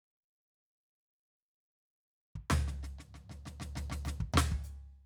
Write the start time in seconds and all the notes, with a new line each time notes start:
2.35 kick
2.50 snare, floor tom
2.67 snare, floor tom
2.83 snare, floor tom
2.98 snare, floor tom
3.14 snare, floor tom
3.29 snare, floor tom
3.45 snare, floor tom
3.60 snare, floor tom
3.75 snare, floor tom
3.90 snare, floor tom
4.05 snare, floor tom, hi-hat pedal
4.20 kick
4.33 floor tom, hi-hat pedal
4.37 snare
4.51 kick
4.64 hi-hat pedal